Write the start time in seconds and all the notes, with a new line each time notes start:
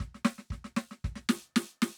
0.01 kick, snare
0.15 snare
0.25 snare
0.39 snare
0.51 kick, snare
0.65 snare
0.77 snare
0.91 snare
1.05 kick, snare
1.16 snare
1.29 snare
1.56 snare
1.82 snare